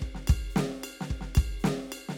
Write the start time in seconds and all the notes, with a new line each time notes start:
0.02 kick
0.15 snare
0.28 kick, ride bell
0.51 hi-hat pedal
0.56 snare
0.84 ride bell
1.01 snare
1.11 kick
1.21 snare
1.36 kick, ride bell
1.60 hi-hat pedal
1.65 snare
1.92 ride bell
2.09 snare